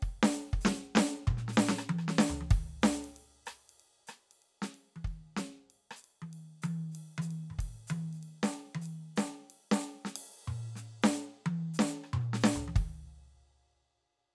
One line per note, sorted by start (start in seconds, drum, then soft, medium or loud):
0.02 kick medium
0.02 ride soft
0.23 snare loud
0.32 hi-hat pedal soft
0.32 ride medium
0.53 kick medium
0.61 hi-hat pedal medium
0.65 snare loud
0.95 snare loud
0.97 snare loud
1.27 kick medium
1.27 mid tom loud
1.37 snare soft
1.48 snare medium
1.53 hi-hat pedal medium
1.57 snare loud
1.69 snare loud
1.79 cross-stick medium
1.79 hi-hat pedal medium
1.89 high tom loud
1.99 cross-stick medium
2.08 snare medium
2.18 snare loud
2.29 floor tom medium
2.41 high tom medium
2.51 kick loud
2.51 ride medium
2.82 snare loud
2.82 hi-hat pedal medium
2.82 ride medium
3.04 ride medium
3.16 ride soft
3.46 cross-stick medium
3.46 hi-hat pedal medium
3.46 ride medium
3.69 ride soft
3.80 ride soft
4.07 cross-stick medium
4.07 hi-hat pedal medium
4.07 ride soft
4.31 ride soft
4.42 ride soft
4.62 snare medium
4.62 hi-hat pedal medium
4.74 ride soft
4.96 high tom medium
5.04 kick medium
5.04 ride soft
5.37 snare medium
5.37 hi-hat pedal medium
5.70 ride soft
5.91 cross-stick medium
5.96 hi-hat pedal medium
6.04 ride soft
6.22 high tom medium
6.33 ride soft
6.62 hi-hat pedal medium
6.62 high tom loud
6.62 ride soft
6.92 hi-hat pedal soft
6.92 ride medium
7.18 hi-hat pedal medium
7.18 high tom loud
7.31 ride soft
7.50 mid tom medium
7.59 kick medium
7.59 ride medium
7.87 hi-hat pedal medium
7.87 high tom loud
7.87 ride soft
8.13 hi-hat pedal soft
8.13 ride soft
8.23 ride soft
8.43 snare medium
8.43 hi-hat pedal medium
8.54 ride soft
8.75 high tom medium
8.81 hi-hat pedal medium
8.86 ride soft
9.16 snare medium
9.16 hi-hat pedal medium
9.16 ride soft
9.50 ride medium
9.71 snare loud
9.71 hi-hat pedal soft
9.84 ride soft
10.05 snare medium
10.05 hi-hat pedal medium
10.16 ride loud
10.37 cross-stick soft
10.48 mid tom loud
10.76 snare soft
10.76 hi-hat pedal medium
11.03 snare loud
11.03 hi-hat pedal medium
11.46 high tom loud
11.74 hi-hat pedal medium
11.79 snare loud
12.04 cross-stick soft
12.13 mid tom loud
12.21 cross-stick soft
12.33 snare medium
12.41 snare loud
12.41 hi-hat pedal medium
12.55 kick soft
12.55 floor tom medium
12.68 high tom medium
12.76 kick loud
12.76 ride medium